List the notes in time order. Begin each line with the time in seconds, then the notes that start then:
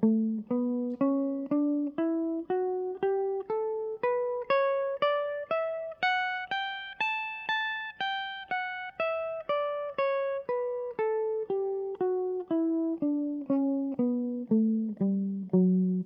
0.03 A3
0.51 B3
1.01 C#4
1.51 D4
1.98 E4
2.50 F#4
3.03 G4
3.50 A4
4.03 B4
4.50 C#5
5.02 D5
5.51 E5
6.03 F#5
6.51 G5
7.00 A5
7.49 A5
8.01 G5
8.51 F#5
9.00 E5
9.49 D5
9.98 C#5
10.49 B4
10.99 A4
11.50 G4
12.01 F#4
12.51 E4
13.02 D4
13.50 C#4
13.99 B3
14.52 A3
14.90 G#3
15.01 G3
15.44 F#3
15.54 F#3